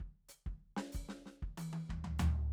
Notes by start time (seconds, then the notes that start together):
0.00 kick
0.29 hi-hat pedal
0.46 kick
0.77 snare
0.92 kick, hi-hat pedal
1.09 snare
1.26 snare
1.42 kick
1.57 hi-hat pedal, high tom
1.73 high tom
1.89 kick, floor tom
2.04 floor tom
2.19 floor tom, hi-hat pedal